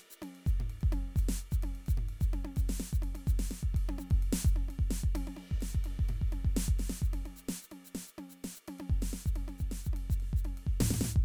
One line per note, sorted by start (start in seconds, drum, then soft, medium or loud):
0.01 ride soft
0.10 hi-hat pedal medium
0.22 high tom medium
0.22 ride medium
0.35 ride soft
0.46 kick medium
0.46 hi-hat pedal medium
0.46 ride medium
0.60 floor tom medium
0.70 ride medium
0.81 kick medium
0.81 ride medium
0.92 high tom medium
0.92 ride medium
1.16 kick medium
1.16 hi-hat pedal medium
1.16 ride medium
1.28 snare medium
1.28 ride medium
1.41 ride soft
1.51 kick medium
1.51 hi-hat pedal medium
1.62 high tom medium
1.62 ride medium
1.75 ride medium
1.86 kick medium
1.86 hi-hat pedal medium
1.86 ride medium
1.97 floor tom medium
2.09 ride medium
2.20 kick medium
2.20 hi-hat pedal medium
2.20 ride medium
2.33 high tom medium
2.33 ride medium
2.44 high tom medium
2.56 kick medium
2.56 hi-hat pedal medium
2.56 ride medium
2.69 snare medium
2.69 ride medium
2.79 snare medium
2.79 ride medium
2.92 kick medium
2.92 hi-hat pedal medium
3.02 high tom medium
3.02 ride medium
3.15 high tom soft
3.15 ride medium
3.27 kick medium
3.27 hi-hat pedal medium
3.39 snare medium
3.39 ride medium
3.51 snare soft
3.51 ride medium
3.63 kick medium
3.74 kick medium
3.74 ride medium
3.89 high tom medium
3.98 hi-hat pedal medium
3.98 high tom medium
4.10 kick medium
4.10 ride medium
4.22 ride medium
4.32 snare medium
4.45 kick medium
4.45 hi-hat pedal medium
4.45 ride medium
4.56 high tom medium
4.68 high tom soft
4.68 ride medium
4.79 kick medium
4.90 snare medium
4.90 ride medium
5.03 kick medium
5.15 high tom medium
5.15 ride loud
5.27 high tom medium
5.27 ride medium
5.36 high tom medium
5.36 ride soft
5.51 kick medium
5.61 snare medium
5.61 ride medium
5.75 kick medium
5.84 high tom soft
5.84 ride medium
5.99 kick medium
6.08 floor tom medium
6.08 ride medium
6.21 kick medium
6.32 high tom medium
6.32 ride medium
6.45 kick medium
6.56 snare medium
6.56 ride medium
6.68 kick medium
6.79 snare soft
6.79 ride medium
6.91 ride medium
7.02 kick medium
7.02 hi-hat pedal medium
7.13 high tom medium
7.13 ride medium
7.25 high tom soft
7.25 ride medium
7.36 hi-hat pedal medium
7.48 snare medium
7.48 ride medium
7.61 hi-hat pedal medium
7.71 high tom medium
7.71 ride medium
7.84 hi-hat pedal medium
7.95 snare medium
7.95 ride medium
8.06 hi-hat pedal medium
8.18 high tom medium
8.18 ride medium
8.29 hi-hat pedal medium
8.44 snare medium
8.44 ride medium
8.54 hi-hat pedal medium
8.68 high tom medium
8.68 ride medium
8.79 high tom medium
8.79 ride medium
8.90 kick medium
9.02 snare medium
9.02 ride medium
9.13 snare medium
9.13 ride medium
9.25 kick medium
9.25 hi-hat pedal medium
9.36 high tom medium
9.36 ride medium
9.48 high tom medium
9.48 ride medium
9.58 kick soft
9.58 hi-hat pedal medium
9.71 snare soft
9.71 ride medium
9.83 kick medium
9.83 hi-hat pedal medium
9.93 high tom soft
9.93 ride medium
10.10 kick medium
10.10 hi-hat pedal medium
10.20 snare soft
10.20 ride medium
10.33 kick medium
10.33 hi-hat pedal medium
10.45 high tom medium
10.45 ride medium
10.57 ride medium
10.67 kick medium
10.80 snare loud
10.80 floor tom loud
10.94 floor tom medium
11.01 snare medium
11.01 floor tom medium
11.16 kick medium